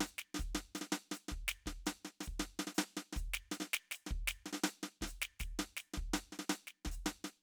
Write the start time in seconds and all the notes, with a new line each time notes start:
0.01 snare
0.06 hi-hat pedal
0.19 snare
0.35 snare
0.36 kick, snare, hi-hat pedal
0.55 snare
0.75 snare, hi-hat pedal
0.82 snare
0.93 snare
1.12 snare, hi-hat pedal
1.29 kick, snare
1.48 snare, hi-hat pedal
1.66 kick, snare
1.86 snare, hi-hat pedal
2.05 snare
2.21 snare, hi-hat pedal
2.28 kick
2.40 snare
2.59 snare
2.67 snare
2.75 snare, hi-hat pedal
2.97 snare
3.13 kick, snare, hi-hat pedal
3.34 snare
3.52 snare, hi-hat pedal
3.60 snare
3.74 snare
3.92 snare, hi-hat pedal
4.07 snare
4.11 kick
4.28 snare, hi-hat pedal
4.46 snare
4.53 snare
4.64 snare, hi-hat pedal
4.83 snare
5.02 kick, snare
5.04 snare, hi-hat pedal
5.22 snare
5.40 kick, snare, hi-hat pedal
5.59 snare
5.77 snare, hi-hat pedal
5.94 kick, snare
6.14 snare, hi-hat pedal
6.33 snare
6.39 snare
6.50 snare, hi-hat pedal
6.68 snare
6.85 kick, snare
6.92 hi-hat pedal
7.06 snare
7.25 snare, hi-hat pedal